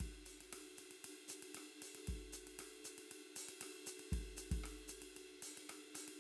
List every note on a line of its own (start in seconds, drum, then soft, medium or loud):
0.01 kick soft
0.01 ride medium
0.26 hi-hat pedal soft
0.26 ride soft
0.41 ride soft
0.53 cross-stick soft
0.53 ride medium
0.77 hi-hat pedal soft
0.77 ride medium
0.92 ride soft
1.05 ride medium
1.29 hi-hat pedal medium
1.29 ride medium
1.43 ride medium
1.55 cross-stick soft
1.55 ride medium
1.83 hi-hat pedal medium
1.83 ride medium
1.95 cross-stick soft
1.95 ride medium
2.08 kick soft
2.08 ride medium
2.33 hi-hat pedal medium
2.33 ride medium
2.48 ride soft
2.60 cross-stick soft
2.60 ride medium
2.85 hi-hat pedal medium
2.85 ride medium
2.99 ride medium
3.12 ride medium
3.37 hi-hat pedal medium
3.37 ride medium
3.49 ride medium
3.62 cross-stick soft
3.62 ride medium
3.87 hi-hat pedal loud
3.87 ride medium
4.00 ride medium
4.13 kick soft
4.13 ride medium
4.37 hi-hat pedal medium
4.37 ride medium
4.52 kick soft
4.52 ride medium
4.64 cross-stick soft
4.64 ride medium
4.88 hi-hat pedal medium
4.88 ride medium
5.03 ride medium
5.17 ride medium
5.43 hi-hat pedal medium
5.43 ride medium
5.58 ride medium
5.70 cross-stick soft
5.70 ride medium
5.95 cross-stick soft
5.95 hi-hat pedal medium
5.95 ride medium
6.09 ride medium